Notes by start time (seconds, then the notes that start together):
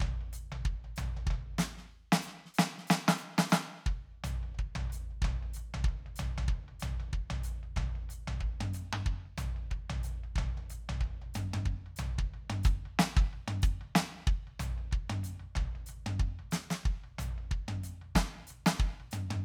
0.01 kick, floor tom
0.21 floor tom
0.34 floor tom, hi-hat pedal
0.53 floor tom
0.66 kick, floor tom
0.85 floor tom
0.97 floor tom, hi-hat pedal
1.17 floor tom
1.27 kick, floor tom
1.59 snare, hi-hat pedal
1.78 snare
2.13 snare
2.23 hi-hat pedal
2.27 snare
2.46 snare
2.55 hi-hat pedal
2.59 snare
2.79 snare
2.88 snare, hi-hat pedal
3.09 snare
3.18 hi-hat pedal
3.39 snare
3.50 snare, hi-hat pedal
3.87 kick, floor tom
4.25 floor tom, hi-hat pedal
4.44 floor tom
4.55 floor tom
4.59 kick
4.76 floor tom
4.91 floor tom, hi-hat pedal
5.11 floor tom
5.23 kick, floor tom
5.43 floor tom
5.54 floor tom, hi-hat pedal
5.75 floor tom
5.85 kick
5.89 floor tom
6.07 floor tom
6.16 floor tom, hi-hat pedal
6.39 floor tom
6.49 kick, floor tom
6.69 floor tom
6.80 floor tom, hi-hat pedal
7.00 floor tom
7.14 kick, floor tom
7.31 floor tom
7.44 floor tom, hi-hat pedal
7.64 floor tom
7.77 kick, floor tom
7.96 floor tom
8.10 kick, floor tom, hi-hat pedal
8.28 floor tom
8.41 kick, floor tom
8.61 high tom
8.74 floor tom, hi-hat pedal
8.93 high tom
9.07 kick, floor tom
9.26 floor tom
9.38 floor tom, hi-hat pedal
9.57 floor tom
9.71 kick, floor tom
9.90 floor tom
10.04 floor tom, hi-hat pedal
10.24 floor tom
10.36 kick, floor tom
10.58 floor tom
10.70 floor tom, hi-hat pedal
10.90 floor tom
11.01 kick, floor tom
11.22 floor tom
11.35 hi-hat pedal, high tom
11.54 high tom
11.66 kick, floor tom
11.87 floor tom
11.97 floor tom, hi-hat pedal
12.19 kick, floor tom
12.34 floor tom
12.50 high tom
12.64 kick, hi-hat pedal
12.68 floor tom
12.86 floor tom
13.00 snare
13.17 kick, floor tom
13.34 floor tom
13.48 high tom
13.63 kick, floor tom, hi-hat pedal
13.82 floor tom
13.96 snare
14.28 kick, floor tom
14.48 floor tom
14.60 floor tom, hi-hat pedal
14.78 floor tom
14.92 kick, floor tom
15.10 high tom
15.24 floor tom, hi-hat pedal
15.40 floor tom
15.56 kick, floor tom
15.76 floor tom
15.87 floor tom, hi-hat pedal
16.07 high tom
16.20 kick, floor tom
16.40 kick, floor tom
16.52 snare, hi-hat pedal
16.71 snare
16.84 kick, floor tom
17.04 floor tom
17.19 kick, floor tom, hi-hat pedal
17.39 floor tom
17.52 kick, floor tom
17.69 high tom
17.84 floor tom, hi-hat pedal
18.02 floor tom
18.16 kick, snare
18.35 kick, floor tom
18.48 kick, floor tom, hi-hat pedal
18.67 snare
18.80 kick, floor tom
19.01 floor tom
19.12 hi-hat pedal, high tom
19.31 high tom